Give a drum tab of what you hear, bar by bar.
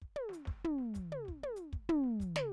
Hi-hat    |--p---p---p---p-|
Snare     |--gg-gg-g-gg-ggo|
High tom  |-o-----o-o-----o|
Floor tom |----o-------o---|
Kick      |g--g--g-g--g--g-|